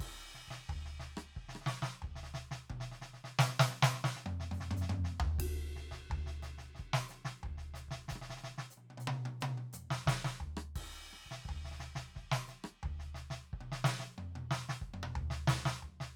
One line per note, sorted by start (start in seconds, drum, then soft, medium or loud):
0.01 kick soft
0.01 crash medium
0.34 snare soft
0.34 hi-hat pedal soft
0.48 kick soft
0.48 snare medium
0.70 kick soft
0.70 floor tom medium
0.86 snare soft
1.00 snare medium
1.17 kick soft
1.17 cross-stick medium
1.36 kick soft
1.36 snare soft
1.45 snare soft
1.49 snare medium
1.56 cross-stick medium
1.62 snare soft
1.67 snare medium
1.71 hi-hat pedal soft
1.82 kick soft
1.82 snare medium
2.03 kick soft
2.03 floor tom medium
2.16 snare soft
2.24 snare soft
2.35 snare medium
2.35 hi-hat pedal soft
2.52 snare medium
2.70 kick soft
2.70 high tom medium
2.81 snare medium
2.92 snare soft
3.02 snare medium
3.14 snare soft
3.25 snare medium
3.39 snare loud
3.49 snare soft
3.60 snare loud
3.71 snare soft
3.83 snare loud
3.94 snare soft
4.05 snare loud
4.17 snare soft
4.27 mid tom loud
4.41 snare soft
4.52 hi-hat pedal soft
4.52 mid tom loud
4.61 snare medium
4.71 mid tom loud
4.77 hi-hat pedal medium
4.82 snare soft
4.90 mid tom loud
5.05 snare soft
5.21 floor tom loud
5.39 kick medium
5.39 ride loud
5.77 snare soft
5.92 kick soft
5.92 snare medium
6.11 kick soft
6.11 floor tom loud
6.27 snare soft
6.43 snare soft
6.43 hi-hat pedal soft
6.59 kick soft
6.59 snare soft
6.75 snare soft
6.80 kick soft
6.94 snare loud
7.09 snare soft
7.09 hi-hat pedal medium
7.25 kick soft
7.25 snare medium
7.44 kick soft
7.44 floor tom medium
7.58 snare soft
7.74 snare soft
7.74 hi-hat pedal medium
7.89 kick soft
7.89 snare medium
8.09 kick soft
8.09 snare medium
8.09 hi-hat pedal medium
8.16 cross-stick soft
8.22 snare medium
8.30 snare medium
8.37 snare soft
8.37 hi-hat pedal soft
8.44 snare medium
8.59 snare medium
8.71 hi-hat pedal medium
8.78 high tom soft
8.91 high tom medium
8.98 hi-hat pedal medium
8.98 high tom medium
9.08 high tom loud
9.26 high tom loud
9.41 hi-hat pedal medium
9.41 high tom loud
9.58 high tom medium
9.74 hi-hat pedal loud
9.74 mid tom soft
9.91 snare medium
10.07 kick soft
10.07 snare loud
10.25 snare medium
10.41 floor tom medium
10.57 cross-stick medium
10.76 kick soft
10.76 crash medium
11.13 cross-stick soft
11.27 kick soft
11.32 snare medium
11.46 kick soft
11.46 floor tom medium
11.65 snare soft
11.72 snare soft
11.79 snare medium
11.79 hi-hat pedal soft
11.96 kick soft
11.96 snare medium
12.16 kick soft
12.16 snare soft
12.32 snare medium
12.48 snare soft
12.48 hi-hat pedal soft
12.65 kick soft
12.65 cross-stick medium
12.84 kick soft
12.84 floor tom medium
13.00 snare soft
13.15 snare soft
13.15 hi-hat pedal soft
13.31 snare medium
13.54 kick medium
13.61 kick soft
13.61 high tom medium
13.72 snare medium
13.85 snare loud
14.00 snare medium
14.19 mid tom medium
14.36 high tom medium
14.51 snare loud
14.70 snare medium
14.82 kick soft
14.88 kick soft
14.94 mid tom medium
15.04 high tom medium
15.16 floor tom loud
15.31 snare medium
15.48 snare loud
15.66 snare loud
15.83 floor tom medium
16.01 snare medium